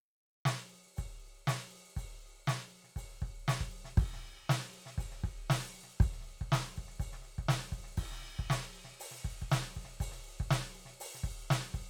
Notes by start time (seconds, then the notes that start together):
0.45 open hi-hat, snare
0.70 open hi-hat
0.96 open hi-hat, kick
1.47 open hi-hat, snare
1.71 open hi-hat
1.97 open hi-hat, kick
2.22 open hi-hat
2.47 open hi-hat, snare
2.70 open hi-hat
2.84 snare
2.90 snare
2.96 open hi-hat, kick
3.03 snare
3.08 snare
3.12 snare
3.16 snare
3.21 kick, open hi-hat
3.48 open hi-hat, snare
3.60 kick
3.71 open hi-hat
3.84 snare
3.97 kick, crash
4.13 snare
4.21 snare, open hi-hat
4.49 open hi-hat, snare
4.75 open hi-hat
4.86 snare
4.98 open hi-hat, kick
5.11 snare
5.24 open hi-hat, kick
5.50 open hi-hat, snare
5.76 open hi-hat
5.83 snare
6.00 open hi-hat, kick
6.13 snare
6.21 snare
6.27 snare
6.41 kick
6.52 open hi-hat, snare
6.75 open hi-hat, kick
6.87 snare
6.92 snare
7.00 open hi-hat, kick
7.12 snare
7.22 open hi-hat, snare
7.38 kick
7.49 open hi-hat, snare
7.72 kick, open hi-hat
7.83 snare
7.91 snare
7.97 kick, crash
8.12 snare
8.21 snare, open hi-hat
8.39 kick
8.50 open hi-hat, snare
8.74 open hi-hat
8.84 snare
9.00 open hi-hat
9.11 snare
9.24 open hi-hat, kick
9.42 kick
9.51 open hi-hat, snare
9.74 kick, open hi-hat
9.84 snare
10.00 open hi-hat, kick
10.11 snare
10.25 open hi-hat, snare
10.40 kick
10.51 open hi-hat, snare
10.75 open hi-hat
10.85 snare
11.00 open hi-hat
11.14 snare
11.24 open hi-hat, kick
11.50 open hi-hat, snare
11.74 open hi-hat, kick